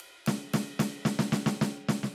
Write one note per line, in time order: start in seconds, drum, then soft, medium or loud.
0.01 ride medium
0.27 snare loud
0.27 ride loud
0.54 snare loud
0.54 ride loud
0.80 snare loud
0.80 ride loud
1.06 snare loud
1.20 snare loud
1.33 snare loud
1.47 snare loud
1.62 snare loud
1.89 snare loud
2.04 snare medium